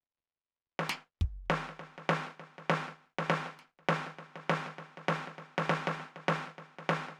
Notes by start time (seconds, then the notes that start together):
0.79 snare
0.89 snare
1.21 kick
1.46 kick
1.50 snare
1.69 snare
1.79 snare
1.98 snare
2.09 snare
2.27 snare
2.40 snare
2.58 snare
2.70 snare
2.88 snare
3.19 snare
3.30 snare
3.46 snare
3.59 snare
3.79 snare
3.89 snare
4.07 snare
4.19 snare
4.36 snare
4.50 snare
4.66 snare
4.78 snare
4.97 snare
5.08 snare
5.27 snare
5.38 snare
5.58 snare
5.69 snare
5.87 snare
6.00 snare
6.16 snare
6.28 snare
6.47 snare
6.58 snare
6.79 snare
6.89 snare
7.09 snare